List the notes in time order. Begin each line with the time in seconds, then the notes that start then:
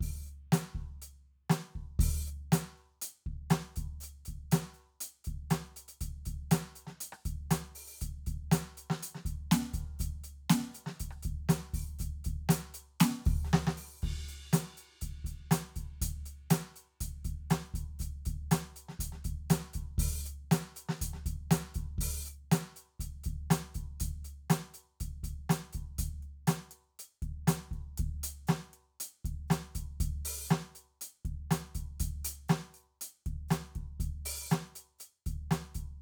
0.01 open hi-hat, kick
0.26 hi-hat pedal
0.53 closed hi-hat, snare
0.75 kick
1.02 closed hi-hat
1.50 closed hi-hat, snare
1.76 kick
2.00 open hi-hat, kick
2.27 hi-hat pedal
2.52 closed hi-hat, snare
2.78 closed hi-hat
3.02 closed hi-hat
3.27 kick
3.51 closed hi-hat, snare
3.76 closed hi-hat, kick
4.01 closed hi-hat, hi-hat pedal
4.26 closed hi-hat, kick
4.52 closed hi-hat, snare
4.74 open hi-hat
5.01 closed hi-hat
5.25 closed hi-hat, kick
5.51 closed hi-hat, snare
5.77 closed hi-hat
5.89 closed hi-hat
6.01 closed hi-hat, kick
6.26 closed hi-hat, kick
6.51 closed hi-hat, snare
6.76 closed hi-hat
6.87 snare
7.01 closed hi-hat
7.13 cross-stick
7.26 closed hi-hat, kick
7.47 kick
7.51 closed hi-hat, snare
7.76 open hi-hat
7.88 open hi-hat
8.00 closed hi-hat, kick, hi-hat pedal
8.27 closed hi-hat, kick
8.48 kick, snare
8.53 closed hi-hat
8.78 closed hi-hat
8.90 snare
9.03 closed hi-hat
9.15 snare
9.26 closed hi-hat, kick
9.52 closed hi-hat, snare
9.74 closed hi-hat, kick
10.00 closed hi-hat, kick, hi-hat pedal
10.24 closed hi-hat
10.50 closed hi-hat, snare
10.74 closed hi-hat, hi-hat pedal
10.87 snare
11.00 closed hi-hat, kick
11.11 cross-stick
11.23 closed hi-hat, kick
11.49 closed hi-hat, snare
11.74 open hi-hat, kick
11.99 closed hi-hat, kick, hi-hat pedal
12.25 closed hi-hat, kick
12.49 closed hi-hat, snare
12.74 closed hi-hat
13.00 closed hi-hat, snare
13.26 open hi-hat, kick
13.45 snare
13.54 snare
13.67 snare
13.78 open hi-hat
14.01 kick, hi-hat pedal, crash
14.29 closed hi-hat
14.53 closed hi-hat, snare
14.78 closed hi-hat
15.02 closed hi-hat, kick
15.25 closed hi-hat, kick
15.51 closed hi-hat, snare
15.76 closed hi-hat, kick
16.02 closed hi-hat, kick
16.26 closed hi-hat
16.51 closed hi-hat, snare
16.76 closed hi-hat
17.01 closed hi-hat, kick
17.25 closed hi-hat, kick
17.51 closed hi-hat, snare
17.74 open hi-hat, kick
18.00 closed hi-hat, kick, hi-hat pedal
18.26 closed hi-hat, kick
18.52 closed hi-hat, snare
18.76 closed hi-hat
18.89 snare
19.00 closed hi-hat, kick
19.13 snare
19.25 closed hi-hat, kick
19.50 closed hi-hat, snare
19.74 closed hi-hat, kick
19.99 open hi-hat, kick
20.26 closed hi-hat, hi-hat pedal
20.52 closed hi-hat, snare
20.76 closed hi-hat, hi-hat pedal
20.89 snare
21.02 closed hi-hat, kick
21.14 snare
21.26 closed hi-hat, kick
21.51 closed hi-hat, snare
21.75 closed hi-hat, kick
21.99 open hi-hat, kick
22.25 open hi-hat, hi-hat pedal
22.52 closed hi-hat, snare
22.77 closed hi-hat
23.00 closed hi-hat, kick
23.24 closed hi-hat, kick
23.51 closed hi-hat, snare
23.75 closed hi-hat, kick
24.00 closed hi-hat, kick
24.25 closed hi-hat
24.50 closed hi-hat, snare
24.74 closed hi-hat
25.01 closed hi-hat, kick
25.24 closed hi-hat, kick
25.50 closed hi-hat, snare
25.73 closed hi-hat, kick
25.99 closed hi-hat, kick
26.23 closed hi-hat
26.48 closed hi-hat, snare
26.71 closed hi-hat
27.00 closed hi-hat
27.22 kick, closed hi-hat
27.48 closed hi-hat, snare
27.72 kick, closed hi-hat
27.98 kick, closed hi-hat
28.24 open hi-hat
28.48 snare, hi-hat pedal
28.74 closed hi-hat
29.01 closed hi-hat
29.25 kick, closed hi-hat
29.48 closed hi-hat, snare, hi-hat pedal
29.75 closed hi-hat, kick
30.01 closed hi-hat, kick
30.25 open hi-hat
30.49 snare, hi-hat pedal
30.76 closed hi-hat
31.02 closed hi-hat
31.25 kick, closed hi-hat
31.51 closed hi-hat, snare
31.75 closed hi-hat, kick
32.00 closed hi-hat, kick
32.25 closed hi-hat
32.49 snare, hi-hat pedal
32.74 hi-hat pedal, open hi-hat
33.02 closed hi-hat
33.27 kick, closed hi-hat
33.49 closed hi-hat, snare, hi-hat pedal
33.76 kick, closed hi-hat
34.00 closed hi-hat, kick
34.26 open hi-hat
34.51 snare, hi-hat pedal
34.76 closed hi-hat
34.99 closed hi-hat, hi-hat pedal
35.27 closed hi-hat, kick
35.51 closed hi-hat, snare
35.75 closed hi-hat, kick